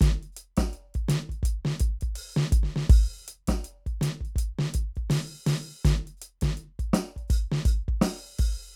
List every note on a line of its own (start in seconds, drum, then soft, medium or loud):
0.01 closed hi-hat loud
0.01 kick medium
0.01 snare loud
0.01 hi-hat pedal soft
0.23 closed hi-hat soft
0.33 hi-hat pedal soft
0.37 closed hi-hat loud
0.57 kick medium
0.57 snare loud
0.57 closed hi-hat loud
0.74 closed hi-hat medium
0.95 kick medium
0.95 closed hi-hat medium
1.09 closed hi-hat loud
1.09 snare loud
1.30 kick soft
1.30 closed hi-hat soft
1.44 closed hi-hat loud
1.44 kick medium
1.66 snare loud
1.80 closed hi-hat loud
1.80 kick medium
2.02 kick medium
2.02 closed hi-hat medium
2.16 open hi-hat loud
2.36 snare loud
2.36 hi-hat pedal soft
2.53 open hi-hat loud
2.53 kick medium
2.64 snare medium
2.64 hi-hat pedal soft
2.77 snare loud
2.90 open hi-hat loud
2.90 kick loud
3.27 closed hi-hat loud
3.27 hi-hat pedal soft
3.48 kick medium
3.48 snare loud
3.48 closed hi-hat loud
3.65 closed hi-hat medium
3.87 kick soft
3.87 closed hi-hat soft
4.02 closed hi-hat loud
4.02 snare loud
4.21 kick soft
4.26 closed hi-hat soft
4.36 closed hi-hat loud
4.36 kick medium
4.59 snare loud
4.75 closed hi-hat loud
4.75 kick medium
4.96 kick soft
4.96 closed hi-hat soft
5.11 open hi-hat loud
5.11 snare loud
5.46 open hi-hat loud
5.46 kick soft
5.46 snare loud
5.85 open hi-hat loud
5.85 kick medium
5.85 snare loud
5.85 hi-hat pedal soft
6.08 closed hi-hat medium
6.18 hi-hat pedal soft
6.22 closed hi-hat loud
6.42 kick medium
6.42 snare loud
6.42 closed hi-hat medium
6.58 closed hi-hat medium
6.80 kick medium
6.80 closed hi-hat medium
6.94 closed hi-hat loud
6.94 snare loud
7.17 kick soft
7.17 closed hi-hat soft
7.29 open hi-hat loud
7.29 kick medium
7.29 hi-hat pedal soft
7.52 snare loud
7.66 open hi-hat loud
7.66 kick medium
7.66 hi-hat pedal soft
7.89 kick medium
7.97 kick soft
8.02 open hi-hat loud
8.02 snare loud
8.39 open hi-hat loud
8.39 kick medium